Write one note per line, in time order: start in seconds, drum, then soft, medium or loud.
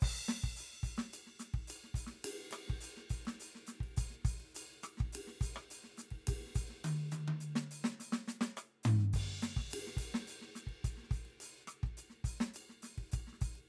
0.01 kick medium
0.01 hi-hat pedal soft
0.01 crash medium
0.28 snare medium
0.28 hi-hat pedal medium
0.44 kick soft
0.44 snare soft
0.57 hi-hat pedal medium
0.61 ride bell soft
0.73 snare soft
0.83 kick soft
0.83 hi-hat pedal medium
0.83 ride soft
0.98 snare medium
0.98 ride soft
1.13 hi-hat pedal medium
1.13 ride bell medium
1.27 snare soft
1.40 snare soft
1.40 hi-hat pedal medium
1.40 ride soft
1.54 kick soft
1.54 ride soft
1.68 hi-hat pedal medium
1.68 ride bell medium
1.84 snare soft
1.95 kick soft
1.95 hi-hat pedal medium
1.95 ride soft
2.07 snare soft
2.07 ride soft
2.25 hi-hat pedal medium
2.25 ride loud
2.52 cross-stick medium
2.52 hi-hat pedal medium
2.52 ride medium
2.68 kick soft
2.68 snare soft
2.81 hi-hat pedal medium
2.81 ride bell medium
2.97 snare soft
3.10 kick soft
3.10 hi-hat pedal medium
3.10 ride soft
3.26 snare medium
3.26 ride soft
3.40 hi-hat pedal medium
3.40 ride bell medium
3.55 snare soft
3.67 snare soft
3.67 hi-hat pedal medium
3.67 ride soft
3.81 kick soft
3.81 ride soft
3.97 kick medium
3.97 hi-hat pedal medium
3.97 ride bell medium
4.10 snare soft
4.15 snare soft
4.19 snare soft
4.22 kick medium
4.22 snare soft
4.22 hi-hat pedal medium
4.27 ride soft
4.40 ride soft
4.55 hi-hat pedal medium
4.55 ride bell medium
4.84 cross-stick medium
4.84 hi-hat pedal medium
4.84 ride soft
4.98 kick medium
4.98 snare soft
5.13 hi-hat pedal medium
5.13 ride loud
5.28 snare soft
5.41 kick medium
5.41 hi-hat pedal medium
5.41 ride soft
5.55 cross-stick medium
5.55 ride soft
5.71 hi-hat pedal medium
5.71 ride bell medium
5.84 snare soft
5.98 snare soft
5.98 hi-hat pedal medium
5.98 ride soft
6.11 kick soft
6.11 ride soft
6.27 kick medium
6.27 hi-hat pedal medium
6.27 ride loud
6.40 snare soft
6.46 snare soft
6.50 snare soft
6.55 kick medium
6.55 hi-hat pedal medium
6.55 ride medium
6.70 snare soft
6.84 hi-hat pedal medium
6.84 high tom loud
6.97 snare soft
7.12 hi-hat pedal medium
7.12 high tom medium
7.28 high tom medium
7.41 snare soft
7.41 hi-hat pedal medium
7.56 snare medium
7.71 hi-hat pedal medium
7.85 snare medium
8.00 snare soft
8.00 hi-hat pedal medium
8.13 snare medium
8.28 snare medium
8.28 hi-hat pedal medium
8.41 snare medium
8.57 cross-stick medium
8.57 hi-hat pedal medium
8.84 floor tom loud
8.84 hi-hat pedal medium
8.99 snare soft
9.13 kick medium
9.13 hi-hat pedal medium
9.13 ride medium
9.30 kick soft
9.42 snare medium
9.42 hi-hat pedal medium
9.57 kick medium
9.57 snare soft
9.71 hi-hat pedal medium
9.71 ride loud
9.87 snare soft
9.97 kick soft
9.97 hi-hat pedal medium
9.97 ride medium
10.13 snare medium
10.13 ride soft
10.28 hi-hat pedal medium
10.28 ride bell soft
10.42 snare soft
10.56 snare soft
10.56 hi-hat pedal medium
10.56 ride soft
10.67 kick soft
10.67 ride soft
10.85 kick medium
10.85 hi-hat pedal medium
10.85 ride bell medium
10.97 snare soft
11.03 snare soft
11.08 kick medium
11.08 snare soft
11.13 hi-hat pedal soft
11.13 ride soft
11.25 snare soft
11.25 ride soft
11.41 hi-hat pedal medium
11.41 ride bell medium
11.68 cross-stick medium
11.68 hi-hat pedal medium
11.84 kick soft
11.84 snare soft
11.97 hi-hat pedal medium
11.97 ride bell medium
12.10 snare soft
12.25 kick soft
12.25 hi-hat pedal medium
12.25 ride soft
12.40 snare medium
12.40 ride soft
12.54 hi-hat pedal medium
12.54 ride bell medium
12.70 snare soft
12.83 snare soft
12.83 hi-hat pedal medium
12.83 ride soft
12.98 kick soft
12.98 ride soft
13.12 kick soft
13.12 hi-hat pedal medium
13.12 ride bell medium
13.27 snare soft
13.33 snare soft
13.39 kick medium
13.39 snare soft
13.39 hi-hat pedal medium
13.39 ride soft
13.56 ride soft